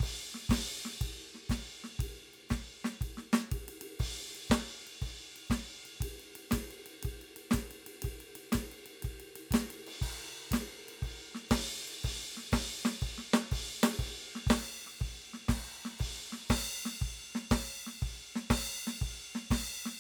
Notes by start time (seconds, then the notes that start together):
0.01 kick, ride
0.35 snare
0.50 kick, snare, hi-hat pedal, ride
0.86 snare
1.02 kick, ride
1.35 snare
1.50 kick, snare, hi-hat pedal, ride
1.85 snare
2.00 kick, ride
2.34 ride
2.50 kick, snare, hi-hat pedal, ride
2.85 snare
3.02 kick, ride
3.18 snare
3.34 snare
3.51 kick, hi-hat pedal, ride
3.69 ride
3.82 ride
4.00 kick, ride
4.36 ride
4.48 kick, snare, hi-hat pedal
4.52 ride
4.88 ride
5.03 kick, ride
5.37 ride
5.48 kick, snare, hi-hat pedal, ride
5.86 ride
6.01 kick, ride
6.21 ride
6.36 ride
6.51 kick, snare, hi-hat pedal, ride
6.72 ride
6.87 ride
7.04 kick, ride
7.22 ride
7.37 ride
7.51 kick, snare, hi-hat pedal, ride
7.72 ride
7.87 ride
8.03 kick, ride
8.21 ride
8.36 ride
8.53 kick, snare, hi-hat pedal, ride
8.73 ride
8.87 ride
9.03 kick, ride
9.21 ride
9.37 ride
9.52 kick, snare, hi-hat pedal, ride
9.71 ride
9.88 ride
10.02 kick, crash
10.52 kick, snare, hi-hat pedal, ride
10.89 ride
11.03 kick, ride
11.36 snare
11.49 kick, snare, hi-hat pedal, ride
11.89 ride
12.05 kick, ride
12.38 snare
12.52 kick, snare, hi-hat pedal, ride
12.86 snare
13.02 kick, ride
13.19 snare
13.34 snare
13.53 kick, hi-hat pedal, ride
13.84 snare, ride
14.00 kick, ride
14.36 snare
14.48 kick, snare, hi-hat pedal, crash
14.87 cross-stick
15.01 kick, ride
15.34 snare
15.49 kick, snare, hi-hat pedal, crash
15.86 snare
16.00 kick, ride
16.33 snare
16.50 kick, snare, hi-hat pedal, crash
16.86 snare
17.01 kick, ride
17.36 snare
17.51 kick, snare, hi-hat pedal, crash
17.88 snare
18.02 kick, ride
18.36 snare
18.51 kick, snare, hi-hat pedal, crash
18.88 snare
19.02 kick, ride
19.36 snare
19.51 kick, snare, hi-hat pedal, crash
19.86 snare